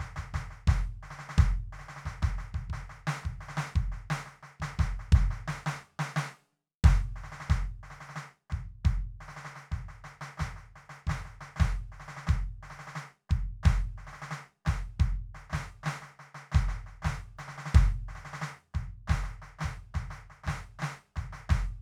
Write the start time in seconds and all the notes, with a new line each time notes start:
0.01 kick, snare
0.18 kick, snare
0.36 kick, snare
0.52 snare
0.69 kick, snare
1.05 snare
1.12 snare
1.21 snare
1.31 snare
1.40 kick, snare
1.75 snare
1.81 snare
1.90 snare
1.98 snare
2.07 kick, snare
2.24 kick, snare
2.40 snare
2.56 kick, snare
2.72 kick, snare
2.91 snare
3.09 snare
3.25 kick, snare
3.43 snare
3.50 snare
3.59 snare
3.77 kick, snare
3.94 snare
4.12 snare
4.28 snare
4.45 snare
4.62 kick, snare
4.81 kick, snare
5.01 snare
5.14 kick, snare
5.33 snare
5.50 snare
5.68 snare
6.01 snare
6.18 snare
6.86 kick, snare
7.18 snare
7.26 snare
7.34 snare
7.42 snare
7.52 kick, snare
7.85 snare
7.92 snare
8.11 snare
8.18 snare
8.52 kick, snare
8.87 kick, snare
9.22 snare
9.30 snare
9.38 snare
9.47 snare
9.57 snare
9.74 kick, snare
9.90 snare
10.06 snare
10.23 snare
10.39 snare
10.41 kick, snare
10.58 snare
10.78 snare
10.91 snare
11.09 kick, snare
11.11 snare
11.27 snare
11.43 snare
11.58 snare
11.62 kick, snare
11.94 snare
12.02 snare
12.10 snare
12.19 snare
12.29 kick, snare
12.65 snare
12.72 snare
12.81 snare
12.89 snare
12.97 snare
13.31 kick, snare
13.65 snare
13.67 kick, snare
14.00 snare
14.09 snare
14.15 snare
14.24 snare
14.33 snare
14.67 kick, snare
15.02 kick, snare
15.37 snare
15.52 kick, snare
15.55 snare
15.85 snare
15.88 snare
16.04 snare
16.21 snare
16.37 snare
16.54 kick, snare
16.57 snare
16.70 snare
16.88 snare
17.04 snare
17.07 kick, snare
17.40 snare, hi-hat pedal
17.50 snare
17.60 snare
17.68 snare
17.76 kick, snare
18.10 snare
18.17 snare
18.27 snare
18.35 snare
18.44 snare
18.76 kick, snare
19.09 kick, snare
19.12 snare
19.25 snare
19.44 snare
19.61 snare
19.63 kick, snare
19.96 kick, snare
20.12 snare
20.32 snare
20.46 kick, snare
20.50 snare
20.81 snare
20.84 snare
21.18 kick, snare
21.35 snare
21.51 kick, snare